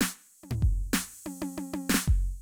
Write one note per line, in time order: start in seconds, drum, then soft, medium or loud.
0.00 snare loud
0.00 crash medium
0.43 high tom medium
0.51 floor tom loud
0.62 kick medium
0.93 snare loud
0.93 crash loud
1.26 high tom loud
1.42 high tom loud
1.58 high tom loud
1.74 high tom loud
1.89 snare loud
1.94 snare loud
2.08 kick medium